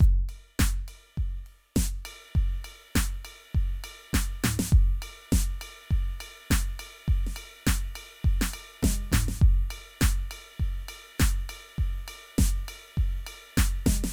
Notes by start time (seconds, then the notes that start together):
0.01 kick, hi-hat pedal
0.29 ride bell
0.59 kick, snare, hi-hat pedal
0.88 ride bell
1.18 kick, ride
1.47 ride
1.76 kick, snare, hi-hat pedal, ride
2.06 ride bell
2.36 kick, ride
2.65 ride bell
2.95 kick, snare, hi-hat pedal, ride
3.25 ride bell
3.55 kick, ride
3.84 ride bell
4.14 kick, snare, hi-hat pedal, ride bell
4.44 snare, floor tom
4.59 snare
4.73 kick, snare, ride
5.02 ride bell
5.32 kick, snare, hi-hat pedal, ride
5.52 kick
5.62 ride bell
5.91 kick, ride
6.21 ride bell
6.50 kick, snare, hi-hat pedal
6.80 ride bell
7.08 kick, ride
7.27 snare
7.37 ride bell
7.67 kick, snare, hi-hat pedal
7.96 ride bell
8.24 kick, hi-hat pedal, ride
8.42 snare
8.54 kick, ride bell
8.83 kick, snare, hi-hat pedal, mid tom
9.12 kick, snare, floor tom
9.29 snare
9.42 kick
9.66 kick
9.71 ride bell
9.77 kick
10.00 kick, snare, hi-hat pedal
10.31 ride bell
10.60 kick, ride
10.86 kick, ride bell
11.19 kick, snare, hi-hat pedal, ride
11.50 ride bell
11.79 kick, ride
12.07 kick, ride bell
12.38 kick, snare, hi-hat pedal
12.63 kick
12.69 ride bell
12.98 kick, ride
13.20 kick
13.27 ride bell
13.58 kick, snare, hi-hat pedal, ride
13.86 kick, snare, mid tom
14.04 snare